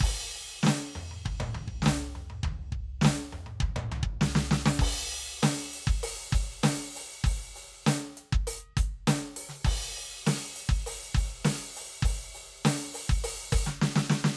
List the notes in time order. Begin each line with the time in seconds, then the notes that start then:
0.01 open hi-hat, kick, crash
0.62 snare, hi-hat pedal
0.67 snare
0.96 mid tom
1.11 high tom
1.26 kick, floor tom
1.40 high tom
1.55 floor tom
1.68 kick
1.82 snare
1.86 snare
2.16 mid tom
2.30 high tom
2.44 kick, floor tom
2.72 kick
3.02 snare
3.05 snare
3.33 mid tom
3.46 high tom
3.60 kick, floor tom
3.76 high tom
3.92 floor tom
4.03 kick
4.21 snare
4.36 snare
4.51 snare
4.66 snare
4.79 kick, crash
5.12 open hi-hat
5.43 open hi-hat, snare
5.74 open hi-hat
5.87 kick
6.03 open hi-hat
6.33 open hi-hat, kick
6.63 open hi-hat, snare
6.96 open hi-hat
7.24 open hi-hat, kick
7.55 open hi-hat
7.87 open hi-hat, snare
8.17 closed hi-hat
8.33 kick
8.47 open hi-hat
8.77 open hi-hat, kick
9.08 closed hi-hat, snare
9.37 open hi-hat
9.49 snare
9.65 kick, crash
9.84 snare
9.89 snare
9.97 open hi-hat
10.27 open hi-hat, snare
10.56 open hi-hat
10.69 kick
10.87 open hi-hat
11.15 open hi-hat, kick
11.45 open hi-hat, snare
11.76 open hi-hat
12.03 open hi-hat, kick
12.34 open hi-hat
12.65 open hi-hat, snare
12.95 open hi-hat
13.10 kick
13.24 open hi-hat
13.53 open hi-hat, kick
13.67 snare, hi-hat pedal
13.82 snare
13.94 snare, hi-hat pedal
14.10 snare
14.25 snare